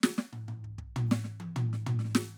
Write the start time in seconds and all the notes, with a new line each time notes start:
0.01 snare
0.04 snare
0.18 snare
0.33 floor tom
0.49 floor tom
0.64 kick
0.79 kick
0.96 floor tom
1.07 percussion
1.12 snare
1.25 snare
1.40 high tom
1.56 floor tom
1.73 snare
1.87 floor tom
1.99 snare
2.05 snare
2.15 snare